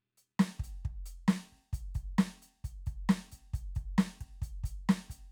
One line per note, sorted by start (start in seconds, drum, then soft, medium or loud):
0.18 closed hi-hat soft
0.40 snare loud
0.60 kick medium
0.64 closed hi-hat medium
0.85 kick medium
0.85 closed hi-hat soft
1.06 closed hi-hat medium
1.28 snare loud
1.32 snare medium
1.52 kick soft
1.73 closed hi-hat medium
1.73 kick medium
1.95 closed hi-hat soft
1.95 kick soft
2.19 snare loud
2.42 closed hi-hat soft
2.64 closed hi-hat soft
2.64 kick soft
2.86 closed hi-hat soft
2.86 kick soft
3.09 snare loud
3.32 closed hi-hat medium
3.32 kick soft
3.54 closed hi-hat soft
3.54 kick medium
3.75 closed hi-hat soft
3.75 kick soft
3.98 snare loud
4.21 kick soft
4.21 closed hi-hat soft
4.42 closed hi-hat soft
4.42 kick soft
4.64 closed hi-hat medium
4.64 kick soft
4.89 snare loud
5.10 closed hi-hat medium
5.10 kick soft